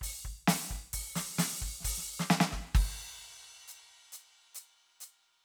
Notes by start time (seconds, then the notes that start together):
0.01 open hi-hat, kick
0.25 kick, open hi-hat
0.48 open hi-hat, snare
0.70 kick, open hi-hat
0.93 kick, open hi-hat
1.16 open hi-hat, snare
1.38 open hi-hat, snare
1.61 kick, open hi-hat
1.80 snare
1.84 open hi-hat, kick
1.97 snare
2.07 open hi-hat
2.19 snare
2.30 snare
2.40 snare
2.51 kick, snare
2.75 kick, crash
3.68 hi-hat pedal
4.12 hi-hat pedal
4.55 hi-hat pedal
5.00 hi-hat pedal